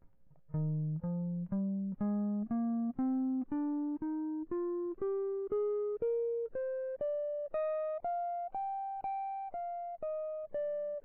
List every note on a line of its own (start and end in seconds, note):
0.56 1.01 D#3
1.05 1.48 F3
1.53 1.97 G3
2.02 2.48 G#3
2.52 2.94 A#3
2.99 3.47 C4
3.52 4.00 D4
4.02 4.47 D#4
4.52 4.96 F4
5.02 5.50 G4
5.52 5.99 G#4
6.03 6.49 A#4
6.56 6.98 C5
7.01 7.49 D5
7.54 8.01 D#5
8.05 8.50 F5
8.55 9.04 G5
9.04 9.52 G5
9.54 9.98 F5
10.03 10.49 D#5
10.55 11.01 D5